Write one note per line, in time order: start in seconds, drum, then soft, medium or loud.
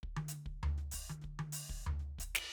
0.03 kick soft
0.16 high tom medium
0.28 snare soft
0.28 hi-hat pedal medium
0.46 kick soft
0.63 floor tom medium
0.77 snare soft
0.91 kick soft
0.91 snare soft
0.91 hi-hat pedal medium
1.09 high tom medium
1.21 kick soft
1.21 snare soft
1.39 high tom medium
1.52 snare soft
1.52 hi-hat pedal medium
1.69 kick soft
1.86 floor tom medium
1.99 snare soft
2.18 kick soft
2.18 hi-hat pedal medium
2.35 snare medium
2.35 ride medium